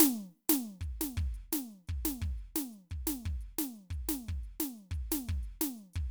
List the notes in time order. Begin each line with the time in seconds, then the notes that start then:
0.02 snare
0.49 closed hi-hat, snare
0.81 kick, closed hi-hat
1.01 snare, closed hi-hat
1.17 kick, closed hi-hat
1.34 closed hi-hat
1.52 snare, closed hi-hat
1.71 closed hi-hat
1.87 kick, closed hi-hat
2.05 snare, closed hi-hat
2.22 kick, closed hi-hat
2.38 closed hi-hat
2.55 snare, closed hi-hat
2.72 closed hi-hat
2.90 kick, closed hi-hat
3.07 snare, closed hi-hat
3.25 kick, closed hi-hat
3.41 closed hi-hat
3.58 snare, closed hi-hat
3.76 closed hi-hat
3.90 kick, closed hi-hat
4.09 snare, closed hi-hat
4.26 kick, closed hi-hat
4.43 closed hi-hat
4.60 snare, closed hi-hat
4.77 closed hi-hat
4.91 kick, closed hi-hat
5.11 snare, closed hi-hat
5.28 kick, closed hi-hat
5.43 closed hi-hat
5.61 snare, closed hi-hat
5.78 closed hi-hat
5.93 kick, closed hi-hat